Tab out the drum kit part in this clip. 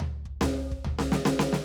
SD |---o---ooooo|
FT |o--o--o-----|
BD |--o--o------|